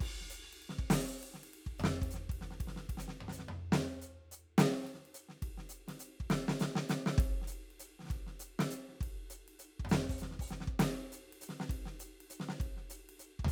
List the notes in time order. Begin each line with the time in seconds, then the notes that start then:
0.01 kick, crash
0.21 snare
0.30 hi-hat pedal
0.35 ride
0.44 cross-stick
0.53 ride
0.63 ride
0.70 snare
0.79 kick
0.91 open hi-hat, snare
1.24 ride
1.34 snare
1.44 ride
1.67 kick
1.79 hi-hat pedal, mid tom
1.84 snare
2.02 kick, ride
2.11 snare, hi-hat pedal
2.21 snare
2.30 kick, ride
2.42 snare
2.51 snare
2.61 kick, ride
2.68 snare
2.77 snare
2.90 kick, ride
2.98 snare, hi-hat pedal
3.08 snare
3.21 floor tom
3.29 snare
3.33 hi-hat pedal
3.39 snare
3.49 mid tom
3.73 snare
4.02 hi-hat pedal
4.32 hi-hat pedal
4.59 snare, ride
4.84 snare, ride
4.95 snare
4.99 snare
5.06 ride
5.15 hi-hat pedal, ride
5.29 snare
5.43 kick, ride
5.58 snare
5.70 hi-hat pedal, ride
5.88 snare, ride
6.00 hi-hat pedal, ride
6.21 kick
6.31 snare, ride
6.49 snare
6.60 snare, hi-hat pedal
6.76 snare
6.90 snare, hi-hat pedal
7.07 snare
7.18 kick, ride
7.42 snare
7.48 hi-hat pedal
7.53 ride
7.71 ride
7.80 hi-hat pedal, ride
8.00 snare
8.03 snare
8.06 snare
8.09 kick, snare, ride
8.27 snare
8.40 hi-hat pedal, ride
8.60 snare, ride
8.71 hi-hat pedal, ride
8.89 snare
8.94 snare
9.01 kick, ride
9.31 hi-hat pedal, ride
9.49 ride
9.60 hi-hat pedal, ride
9.80 kick
9.85 mid tom
9.90 snare, hi-hat pedal
10.10 open hi-hat, kick
10.19 snare, hi-hat pedal
10.32 snare
10.40 open hi-hat, kick
10.48 snare, hi-hat pedal
10.61 snare
10.68 kick
10.80 snare, ride
11.13 hi-hat pedal, ride
11.33 ride
11.42 hi-hat pedal, ride
11.50 snare
11.61 snare
11.70 kick, ride
11.86 snare
12.00 hi-hat pedal, ride
12.21 ride
12.31 hi-hat pedal, ride
12.40 snare
12.49 snare
12.61 kick, ride
12.77 snare
12.90 hi-hat pedal, ride
13.10 ride
13.20 hi-hat pedal, ride
13.40 kick
13.45 floor tom, hi-hat pedal